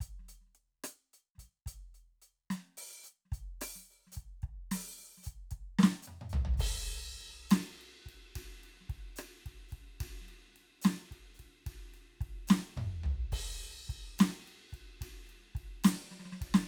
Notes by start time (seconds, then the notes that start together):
0.01 closed hi-hat, kick
0.20 snare
0.24 snare
0.29 closed hi-hat, snare
0.41 snare
0.47 snare
0.56 closed hi-hat
0.84 closed hi-hat, cross-stick
1.14 closed hi-hat
1.36 kick, snare
1.40 closed hi-hat, snare
1.67 closed hi-hat, kick
1.95 closed hi-hat
2.22 closed hi-hat
2.51 closed hi-hat, snare
2.78 open hi-hat
3.04 closed hi-hat, hi-hat pedal
3.26 snare
3.30 kick, snare
3.33 closed hi-hat, snare
3.38 kick
3.62 open hi-hat, cross-stick
3.76 snare
3.91 open hi-hat
4.07 snare
4.12 snare, hi-hat pedal
4.15 closed hi-hat, kick, snare
4.43 kick, closed hi-hat
4.49 kick
4.72 open hi-hat, snare
4.99 open hi-hat, snare
5.18 snare
5.22 snare, hi-hat pedal
5.27 closed hi-hat, kick
5.51 kick, closed hi-hat
5.79 snare
5.84 snare
6.03 hi-hat pedal
6.08 mid tom
6.22 mid tom
6.30 floor tom, hi-hat pedal
6.46 floor tom
6.55 hi-hat pedal, floor tom
6.60 kick, crash
6.67 kick
7.21 ride
7.51 snare, hi-hat pedal, ride
7.82 ride
8.05 kick, snare
8.09 ride
8.36 kick, ride
8.64 ride
8.81 snare
8.87 kick, snare, ride
9.17 cross-stick, hi-hat pedal, ride
9.46 kick, ride
9.69 kick, hi-hat pedal, ride
10.01 kick, ride
10.22 snare
10.27 snare, ride
10.57 ride
10.82 snare, hi-hat pedal, ride
11.12 kick, snare, ride
11.35 hi-hat pedal
11.40 kick, ride
11.67 kick, ride
11.94 hi-hat pedal, ride
12.21 kick, ride
12.48 snare, hi-hat pedal, ride
12.57 snare
12.77 kick, mid tom
13.04 kick, floor tom
13.11 kick
13.33 kick, crash
13.39 kick
13.88 kick, snare, ride
14.19 snare, hi-hat pedal, ride
14.43 hi-hat pedal
14.48 snare, ride
14.59 snare
14.70 kick, hi-hat pedal
14.75 ride
15.02 kick, ride
15.27 hi-hat pedal, ride
15.56 kick, ride
15.84 snare, hi-hat pedal, ride
16.12 snare
16.20 snare
16.26 snare
16.33 snare
16.42 kick, ride
16.55 snare